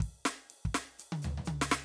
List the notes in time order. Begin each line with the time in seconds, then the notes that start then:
0.00 kick, ride
0.25 snare, ride
0.50 ride
0.65 kick
0.74 snare, ride
0.99 hi-hat pedal, ride
1.12 high tom
1.22 floor tom, hi-hat pedal
1.38 floor tom
1.45 hi-hat pedal, high tom
1.61 snare
1.69 snare, hi-hat pedal